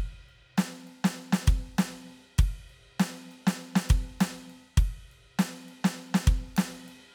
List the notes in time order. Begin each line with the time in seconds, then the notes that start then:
0.30 ride
0.58 snare, ride bell
0.88 ride
1.05 snare
1.33 snare
1.48 kick, ride bell
1.79 snare, ride
2.10 ride
2.39 kick, ride
2.70 ride
3.00 snare, ride
3.32 ride bell
3.48 snare
3.76 snare
3.90 kick, ride bell
4.21 snare, ride bell
4.50 ride
4.78 kick, ride
5.12 ride
5.40 snare, ride
5.69 ride
5.85 snare
6.15 snare
6.28 kick, snare, ride
6.57 snare, ride
6.89 ride